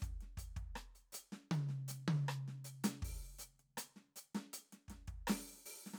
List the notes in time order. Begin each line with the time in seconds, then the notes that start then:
0.01 kick, closed hi-hat, hi-hat pedal
0.21 snare, closed hi-hat
0.37 closed hi-hat, kick
0.56 kick, closed hi-hat
0.75 cross-stick, closed hi-hat
0.95 closed hi-hat
1.12 closed hi-hat, hi-hat pedal
1.32 snare
1.51 hi-hat pedal, high tom
1.69 snare
1.88 snare, hi-hat pedal
2.08 high tom
2.28 cross-stick
2.48 snare
2.64 closed hi-hat, hi-hat pedal
2.84 closed hi-hat, snare
3.02 open hi-hat, kick
3.16 snare
3.39 closed hi-hat, hi-hat pedal
3.59 closed hi-hat
3.77 closed hi-hat, cross-stick
3.96 snare
4.16 hi-hat pedal, open hi-hat
4.35 snare, closed hi-hat
4.53 closed hi-hat
4.72 snare, closed hi-hat
4.88 kick, snare, closed hi-hat
5.08 kick, closed hi-hat
5.27 open hi-hat, cross-stick, snare
5.52 snare
5.55 snare
5.66 open hi-hat
5.86 snare
5.93 snare